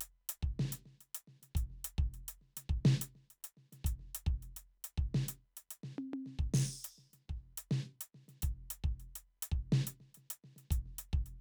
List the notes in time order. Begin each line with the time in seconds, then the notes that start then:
0.01 closed hi-hat
0.29 closed hi-hat
0.43 kick
0.60 snare
0.65 snare
0.72 closed hi-hat
0.86 snare
1.01 snare, closed hi-hat
1.15 closed hi-hat
1.28 snare
1.43 snare, closed hi-hat
1.55 closed hi-hat, kick
1.70 snare
1.85 closed hi-hat
1.98 kick
2.14 closed hi-hat
2.28 closed hi-hat
2.42 snare
2.57 snare, closed hi-hat
2.70 kick
2.85 snare
2.92 snare
3.02 closed hi-hat
3.15 snare
3.30 closed hi-hat
3.44 closed hi-hat
3.57 snare
3.73 snare, closed hi-hat
3.85 closed hi-hat, kick
4.00 snare
4.15 closed hi-hat
4.27 kick
4.43 closed hi-hat
4.57 closed hi-hat
4.84 closed hi-hat
4.98 kick
5.15 snare
5.29 closed hi-hat
5.57 closed hi-hat
5.71 closed hi-hat
5.84 snare
5.98 high tom
6.14 high tom
6.26 snare
6.39 kick
6.54 snare, crash
6.59 snare
6.85 closed hi-hat
6.98 snare
7.13 snare, closed hi-hat
7.29 kick, snare
7.58 closed hi-hat
7.71 snare
8.01 closed hi-hat
8.15 snare
8.28 snare, closed hi-hat
8.42 closed hi-hat, kick
8.71 closed hi-hat
8.84 kick
9.00 closed hi-hat
9.16 closed hi-hat
9.43 closed hi-hat
9.52 kick
9.72 snare
9.87 closed hi-hat
10.00 snare
10.15 snare, closed hi-hat
10.30 closed hi-hat
10.44 snare
10.56 snare, closed hi-hat
10.71 closed hi-hat, kick
10.86 snare
10.99 closed hi-hat
11.13 kick
11.26 closed hi-hat